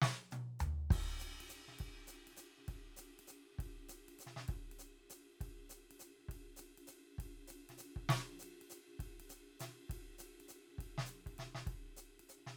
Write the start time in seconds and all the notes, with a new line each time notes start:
0.02 snare
0.31 hi-hat pedal, high tom
0.59 floor tom, hi-hat pedal
0.91 kick, ride, crash
1.19 hi-hat pedal, ride
1.41 ride
1.49 hi-hat pedal, ride
1.68 snare
1.79 kick, ride
2.07 hi-hat pedal, ride
2.27 ride
2.32 snare
2.37 hi-hat pedal, ride
2.58 snare
2.68 kick, ride
2.96 hi-hat pedal, ride
3.19 ride
3.27 hi-hat pedal, ride
3.52 snare
3.59 kick, ride
3.89 hi-hat pedal, ride
4.08 ride
4.19 hi-hat pedal, ride
4.26 snare
4.36 snare
4.48 kick, ride
4.71 ride
4.79 hi-hat pedal, ride
5.10 hi-hat pedal, ride
5.41 kick, ride
5.69 hi-hat pedal, ride
5.91 ride
5.99 hi-hat pedal, ride
6.18 snare
6.29 kick, ride
6.56 hi-hat pedal, ride
6.78 ride
6.87 hi-hat pedal, ride
7.18 kick, ride
7.38 snare
7.48 hi-hat pedal, ride
7.69 snare, ride
7.78 hi-hat pedal, ride
7.96 kick
8.09 snare, ride
8.39 hi-hat pedal, ride
8.61 ride
8.70 hi-hat pedal, ride
8.88 snare
8.99 kick, ride
9.20 ride
9.29 hi-hat pedal, ride
9.60 snare, hi-hat pedal, ride
9.90 kick, ride
10.18 hi-hat pedal, ride
10.40 ride
10.48 hi-hat pedal, ride
10.68 snare
10.78 kick, ride
10.98 snare
11.05 hi-hat pedal, ride
11.26 kick, ride
11.38 snare, ride
11.55 snare
11.67 kick, ride
11.85 snare
11.97 hi-hat pedal, ride
12.13 snare
12.20 ride
12.29 hi-hat pedal, ride
12.38 snare
12.46 snare